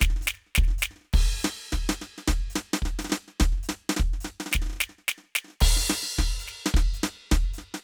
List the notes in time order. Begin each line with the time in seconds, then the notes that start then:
0.01 kick, snare
0.10 snare
0.17 snare
0.22 snare, hi-hat pedal
0.26 snare
0.28 snare
0.34 snare
0.47 snare
0.56 kick, snare
0.64 snare
0.68 snare
0.71 snare
0.79 hi-hat pedal
0.83 snare
0.91 snare
0.96 snare
1.02 snare
1.05 snare
1.14 kick, crash
1.40 hi-hat pedal
1.45 snare
1.73 kick, snare
1.90 snare, hi-hat pedal
2.02 snare
2.18 snare
2.28 kick, snare
2.50 hi-hat pedal
2.56 snare
2.74 snare
2.83 kick, snare
2.99 snare, hi-hat pedal
3.05 snare
3.10 snare
3.12 snare
3.28 snare
3.40 kick, snare
3.53 snare
3.58 snare
3.63 hi-hat pedal
3.69 snare
3.90 snare
3.97 kick, snare
4.14 snare
4.21 hi-hat pedal
4.25 snare
4.40 snare
4.47 snare
4.52 kick, snare
4.62 snare
4.67 snare
4.70 snare
4.73 snare
4.81 snare
4.90 snare
4.99 snare
5.09 snare
5.18 snare
5.24 snare
5.36 snare
5.45 snare
5.49 snare
5.51 snare
5.61 kick, crash
5.77 snare
5.86 snare, hi-hat pedal
6.03 snare
6.19 kick, snare
6.40 hi-hat pedal
6.48 snare
6.66 snare
6.75 kick, snare
6.94 hi-hat pedal
7.04 snare
7.32 kick, snare
7.54 hi-hat pedal
7.59 snare
7.75 snare